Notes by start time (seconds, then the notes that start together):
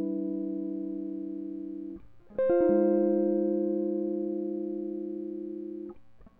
2.38 C5
2.50 F4
2.61 D#4
2.70 G#3